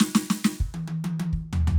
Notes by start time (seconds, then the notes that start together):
0.01 snare, hi-hat pedal
0.15 snare
0.31 snare
0.45 snare, hi-hat pedal
0.61 kick
0.75 high tom
0.88 high tom
1.05 high tom
1.20 high tom
1.33 kick
1.53 floor tom
1.68 floor tom